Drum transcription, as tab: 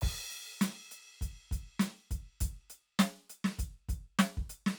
CC |x---------------|----------------|
HH |p-x-x-x-x-x-x-x-|x-x-x-x-x-x-x-x-|
SD |----o-------o---|----o--o----o--o|
BD |o-------o-o---o-|o-------o-o--o--|